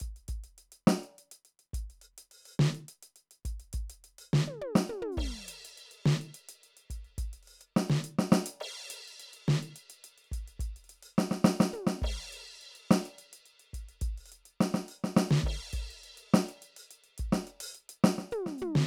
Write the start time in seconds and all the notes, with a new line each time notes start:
0.01 closed hi-hat, kick
0.17 closed hi-hat
0.29 closed hi-hat, kick
0.44 closed hi-hat
0.58 closed hi-hat
0.72 closed hi-hat
0.88 snare
1.04 closed hi-hat
1.19 closed hi-hat
1.32 closed hi-hat
1.45 closed hi-hat
1.60 closed hi-hat
1.74 closed hi-hat, kick
1.90 open hi-hat
2.02 open hi-hat
2.18 closed hi-hat
2.32 open hi-hat
2.46 open hi-hat
2.60 snare
2.75 closed hi-hat
2.89 closed hi-hat
3.03 closed hi-hat
3.16 closed hi-hat
3.31 closed hi-hat
3.46 closed hi-hat, kick
3.60 closed hi-hat
3.73 closed hi-hat, kick
3.90 closed hi-hat
4.05 open hi-hat
4.19 open hi-hat
4.34 snare
4.48 high tom
4.62 high tom
4.76 snare
4.89 mid tom
5.02 mid tom
5.13 hi-hat pedal
5.18 kick, crash
5.23 kick
5.49 closed hi-hat
5.65 closed hi-hat
5.78 closed hi-hat
5.92 closed hi-hat
6.06 snare
6.22 closed hi-hat
6.35 closed hi-hat
6.49 closed hi-hat
6.64 closed hi-hat
6.77 closed hi-hat
6.91 closed hi-hat, kick
7.05 closed hi-hat
7.19 closed hi-hat, kick
7.34 closed hi-hat
7.43 open hi-hat
7.48 open hi-hat
7.62 open hi-hat, hi-hat pedal
7.77 snare
7.90 snare
8.05 closed hi-hat
8.19 snare
8.33 snare
8.46 open hi-hat
8.61 crash
8.91 closed hi-hat
9.08 closed hi-hat
9.20 closed hi-hat
9.34 closed hi-hat
9.49 snare
9.63 closed hi-hat
9.76 closed hi-hat
9.90 closed hi-hat
10.05 closed hi-hat
10.18 closed hi-hat
10.25 closed hi-hat
10.32 closed hi-hat, kick
10.48 closed hi-hat
10.60 closed hi-hat, kick
10.77 closed hi-hat
10.85 open hi-hat
10.90 open hi-hat
11.03 open hi-hat
11.19 snare
11.32 snare
11.45 snare
11.61 snare
11.73 hi-hat pedal, mid tom
11.87 snare
12.02 kick, crash
12.08 kick
12.22 closed hi-hat
12.33 closed hi-hat
12.62 closed hi-hat
12.76 closed hi-hat
12.91 snare
13.06 closed hi-hat
13.19 closed hi-hat
13.33 closed hi-hat
13.46 closed hi-hat
13.60 closed hi-hat
13.74 closed hi-hat, kick
13.89 closed hi-hat
14.02 closed hi-hat, kick
14.18 open hi-hat
14.26 open hi-hat
14.32 closed hi-hat
14.46 closed hi-hat
14.61 snare
14.75 snare
14.89 open hi-hat
14.93 hi-hat pedal
15.04 snare
15.17 snare
15.31 snare
15.38 hi-hat pedal
15.44 kick, crash
15.73 closed hi-hat, kick
15.91 closed hi-hat
16.04 closed hi-hat
16.18 closed hi-hat
16.34 snare
16.49 closed hi-hat
16.63 closed hi-hat
16.77 open hi-hat
16.91 closed hi-hat
17.04 closed hi-hat
17.18 closed hi-hat, kick
17.33 snare
17.47 open hi-hat, hi-hat pedal
17.61 open hi-hat
17.75 closed hi-hat
17.90 closed hi-hat
18.04 snare
18.19 snare
18.32 hi-hat pedal, mid tom
18.47 snare
18.59 floor tom, hi-hat pedal
18.76 snare